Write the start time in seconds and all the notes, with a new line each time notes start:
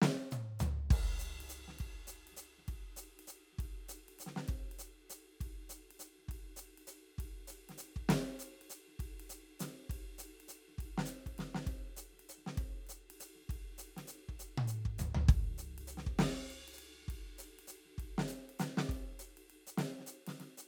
0.02 snare
0.31 hi-hat pedal, high tom
0.59 floor tom, hi-hat pedal
0.90 kick, ride, crash
1.19 hi-hat pedal, ride
1.40 ride
1.49 hi-hat pedal, ride
1.68 snare
1.79 kick, ride
2.07 hi-hat pedal, ride
2.27 ride
2.32 snare
2.37 hi-hat pedal, ride
2.58 snare
2.68 kick, ride
2.96 hi-hat pedal, ride
3.19 ride
3.27 hi-hat pedal, ride
3.52 snare
3.58 kick, ride
3.89 hi-hat pedal, ride
4.08 ride
4.19 hi-hat pedal, ride
4.26 snare
4.36 snare
4.48 kick, ride
4.71 ride
4.79 hi-hat pedal, ride
5.10 hi-hat pedal, ride
5.41 kick, ride
5.69 hi-hat pedal, ride
5.91 ride
5.99 hi-hat pedal, ride
6.18 snare
6.28 kick, ride
6.56 hi-hat pedal, ride
6.78 ride
6.87 hi-hat pedal, ride
7.18 kick, ride
7.38 snare
7.47 hi-hat pedal, ride
7.69 snare, ride
7.78 hi-hat pedal, ride
7.96 kick
8.09 snare, ride
8.39 hi-hat pedal, ride
8.61 ride
8.70 hi-hat pedal, ride
8.88 snare
8.99 kick, ride
9.20 ride
9.29 hi-hat pedal, ride
9.60 snare, hi-hat pedal, ride
9.89 kick, ride
10.18 hi-hat pedal, ride
10.40 ride
10.48 hi-hat pedal, ride
10.68 snare
10.78 kick, ride
10.98 snare
11.05 hi-hat pedal, ride
11.26 kick, ride
11.38 snare, ride
11.55 snare
11.67 kick, ride
11.85 snare
11.97 hi-hat pedal, ride
12.13 snare
12.19 ride
12.29 hi-hat pedal, ride
12.37 snare
12.46 snare
12.57 kick, ride
12.87 hi-hat pedal, ride
13.10 ride
13.20 hi-hat pedal, ride
13.35 snare
13.40 snare
13.49 kick, ride
13.68 snare
13.78 hi-hat pedal, ride
13.97 snare, ride
14.07 hi-hat pedal, ride
14.29 kick
14.39 hi-hat pedal, ride
14.58 high tom
14.68 hi-hat pedal, ride
14.85 kick
14.98 floor tom, hi-hat pedal
15.15 floor tom
15.29 kick, ride
15.58 hi-hat pedal, ride
15.78 ride
15.87 hi-hat pedal, ride
15.97 snare
16.06 kick
16.19 snare, crash
16.44 hi-hat pedal
16.50 ride
16.62 snare
16.68 ride
16.73 hi-hat pedal
16.78 ride
16.94 snare
17.01 snare
17.08 kick, ride
17.25 snare
17.38 hi-hat pedal, ride
17.59 ride
17.67 hi-hat pedal, ride
17.85 snare
17.98 kick, ride
18.18 snare
18.28 hi-hat pedal, ride
18.49 ride
18.59 snare, hi-hat pedal, ride
18.77 snare
18.89 kick, ride
19.11 snare
19.19 hi-hat pedal, ride
19.37 ride
19.50 ride
19.67 hi-hat pedal
19.78 snare, ride
19.99 snare
20.06 hi-hat pedal, ride
20.27 snare, ride
20.40 snare, ride
20.57 hi-hat pedal